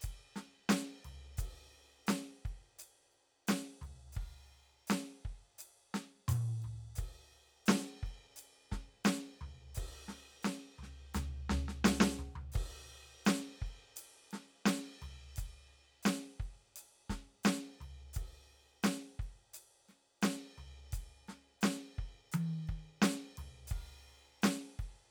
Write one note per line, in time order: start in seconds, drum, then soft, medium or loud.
0.01 kick soft
0.01 hi-hat pedal medium
0.01 ride soft
0.36 snare soft
0.36 ride soft
0.69 snare loud
0.69 hi-hat pedal medium
0.69 ride soft
1.05 floor tom soft
1.05 ride soft
1.37 kick soft
1.37 hi-hat pedal medium
1.37 crash soft
2.07 snare loud
2.07 hi-hat pedal medium
2.07 ride medium
2.45 kick soft
2.45 ride soft
2.79 hi-hat pedal medium
2.79 ride soft
3.12 ride soft
3.47 snare loud
3.47 hi-hat pedal medium
3.47 ride medium
3.81 floor tom medium
3.81 ride soft
4.12 hi-hat pedal soft
4.12 crash soft
4.16 kick soft
4.87 snare loud
4.87 hi-hat pedal medium
4.87 ride medium
5.25 kick soft
5.58 hi-hat pedal medium
5.58 ride medium
5.94 snare medium
5.94 ride soft
6.28 hi-hat pedal medium
6.28 mid tom loud
6.28 ride medium
6.62 floor tom soft
6.62 ride soft
6.95 kick soft
6.95 hi-hat pedal medium
6.95 crash soft
7.66 snare loud
7.66 hi-hat pedal medium
7.66 ride soft
8.03 kick soft
8.03 ride soft
8.36 hi-hat pedal medium
8.36 ride soft
8.72 kick soft
8.72 snare soft
9.04 snare loud
9.04 hi-hat pedal medium
9.04 ride soft
9.41 floor tom medium
9.75 kick soft
9.75 hi-hat pedal medium
9.75 crash medium
10.08 snare soft
10.43 snare medium
10.43 hi-hat pedal soft
10.43 ride soft
10.78 floor tom soft
10.83 snare soft
11.14 snare medium
11.14 floor tom medium
11.14 hi-hat pedal medium
11.49 snare medium
11.49 floor tom medium
11.68 snare soft
11.84 snare loud
11.84 hi-hat pedal medium
12.00 snare loud
12.19 floor tom medium
12.35 floor tom medium
12.52 kick medium
12.52 hi-hat pedal soft
12.52 crash medium
13.25 snare loud
13.25 hi-hat pedal medium
13.25 ride soft
13.62 kick soft
13.66 ride soft
13.96 hi-hat pedal medium
13.96 ride medium
14.16 ride soft
14.31 snare soft
14.31 ride soft
14.66 snare loud
14.66 hi-hat pedal medium
14.66 ride medium
15.02 floor tom soft
15.02 ride soft
15.36 kick soft
15.36 hi-hat pedal medium
15.36 ride soft
15.70 ride soft
16.03 snare loud
16.03 hi-hat pedal medium
16.03 ride medium
16.40 kick soft
16.40 ride soft
16.76 hi-hat pedal medium
16.76 ride medium
17.09 kick soft
17.09 snare medium
17.09 ride soft
17.43 snare loud
17.43 hi-hat pedal medium
17.43 ride soft
17.80 floor tom soft
17.80 ride soft
18.13 kick soft
18.13 hi-hat pedal medium
18.13 crash soft
18.83 snare loud
18.83 hi-hat pedal medium
18.83 ride medium
19.19 kick soft
19.19 ride soft
19.53 hi-hat pedal medium
19.53 ride medium
19.89 snare soft
19.89 ride soft
20.22 snare loud
20.22 hi-hat pedal medium
20.22 ride soft
20.58 floor tom soft
20.58 ride soft
20.92 kick soft
20.92 hi-hat pedal medium
20.92 ride soft
21.28 snare soft
21.28 ride soft
21.61 snare loud
21.61 hi-hat pedal medium
21.61 ride soft
21.98 kick soft
22.32 hi-hat pedal medium
22.32 high tom loud
22.32 ride soft
22.68 kick soft
22.68 ride soft
23.02 snare loud
23.02 hi-hat pedal medium
23.02 ride soft
23.37 floor tom medium
23.37 ride soft
23.67 kick soft
23.67 hi-hat pedal medium
23.67 crash soft
24.42 snare loud
24.42 hi-hat pedal medium
24.42 ride medium
24.79 kick soft
24.79 ride soft